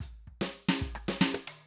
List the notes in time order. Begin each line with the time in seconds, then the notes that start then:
0.00 closed hi-hat, kick
0.27 kick
0.41 closed hi-hat, snare
0.69 snare
0.81 closed hi-hat, kick
0.95 cross-stick
1.08 snare
1.21 snare
1.34 high tom
1.47 high tom